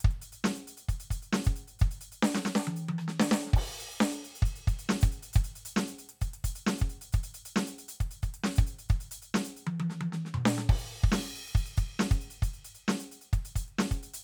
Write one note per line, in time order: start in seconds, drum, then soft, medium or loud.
0.01 closed hi-hat medium
0.05 kick loud
0.11 closed hi-hat soft
0.22 closed hi-hat medium
0.33 closed hi-hat medium
0.45 snare loud
0.56 closed hi-hat soft
0.68 closed hi-hat medium
0.78 closed hi-hat medium
0.89 closed hi-hat medium
0.89 kick medium
1.00 closed hi-hat medium
1.11 closed hi-hat medium
1.11 kick medium
1.23 closed hi-hat soft
1.33 snare loud
1.45 closed hi-hat medium
1.45 kick loud
1.56 closed hi-hat medium
1.68 closed hi-hat medium
1.80 closed hi-hat medium
1.80 kick loud
1.92 closed hi-hat medium
2.12 closed hi-hat medium
2.23 snare loud
2.35 snare loud
2.46 snare loud
2.56 snare loud
2.68 high tom loud
2.77 closed hi-hat medium
2.89 high tom loud
2.99 cross-stick medium
3.09 snare medium
3.20 snare loud
3.32 snare loud
3.48 snare soft
3.54 kick loud
3.54 crash loud
3.69 closed hi-hat soft
3.80 closed hi-hat medium
3.92 closed hi-hat medium
4.01 snare loud
4.13 closed hi-hat medium
4.25 closed hi-hat medium
4.36 closed hi-hat medium
4.43 kick loud
4.56 closed hi-hat medium
4.68 closed hi-hat medium
4.68 kick loud
4.79 closed hi-hat medium
4.90 snare loud
5.02 closed hi-hat medium
5.02 kick loud
5.12 closed hi-hat medium
5.23 closed hi-hat medium
5.34 closed hi-hat medium
5.34 kick loud
5.45 closed hi-hat medium
5.56 closed hi-hat medium
5.66 closed hi-hat loud
5.77 snare loud
5.88 closed hi-hat medium
5.99 closed hi-hat medium
6.10 closed hi-hat medium
6.22 closed hi-hat medium
6.22 kick medium
6.34 closed hi-hat medium
6.45 closed hi-hat loud
6.45 kick medium
6.56 closed hi-hat medium
6.67 snare loud
6.79 closed hi-hat medium
6.79 kick loud
6.90 closed hi-hat medium
7.02 closed hi-hat medium
7.13 closed hi-hat medium
7.13 kick loud
7.24 closed hi-hat medium
7.35 closed hi-hat medium
7.46 closed hi-hat medium
7.57 snare loud
7.68 closed hi-hat medium
7.79 closed hi-hat medium
7.89 closed hi-hat medium
8.01 kick medium
8.01 closed hi-hat medium
8.11 closed hi-hat medium
8.23 closed hi-hat medium
8.23 kick medium
8.35 closed hi-hat medium
8.44 snare loud
8.56 closed hi-hat medium
8.56 kick loud
8.67 closed hi-hat medium
8.79 closed hi-hat medium
8.90 closed hi-hat medium
8.90 kick loud
9.01 closed hi-hat medium
9.12 closed hi-hat loud
9.23 closed hi-hat medium
9.35 snare loud
9.45 closed hi-hat medium
9.57 closed hi-hat medium
9.67 high tom loud
9.80 high tom loud
9.90 snare medium
10.01 high tom loud
10.13 snare medium
10.26 snare soft
10.35 mid tom loud
10.46 snare loud
10.59 snare medium
10.70 kick loud
10.70 crash medium
10.79 closed hi-hat medium
11.04 kick loud
11.12 snare loud
11.12 crash loud
11.36 closed hi-hat medium
11.48 closed hi-hat medium
11.56 closed hi-hat medium
11.56 kick loud
11.66 closed hi-hat medium
11.78 closed hi-hat medium
11.78 kick loud
11.89 closed hi-hat soft
12.00 snare loud
12.12 closed hi-hat medium
12.12 kick loud
12.21 closed hi-hat medium
12.31 closed hi-hat medium
12.43 closed hi-hat medium
12.43 kick loud
12.54 closed hi-hat soft
12.65 closed hi-hat medium
12.89 snare loud
13.00 closed hi-hat medium
13.12 closed hi-hat medium
13.22 closed hi-hat medium
13.34 kick loud
13.34 closed hi-hat medium
13.46 closed hi-hat medium
13.56 closed hi-hat medium
13.56 kick medium
13.69 closed hi-hat soft
13.79 snare loud
13.92 closed hi-hat medium
13.92 kick medium
14.03 closed hi-hat medium
14.14 closed hi-hat loud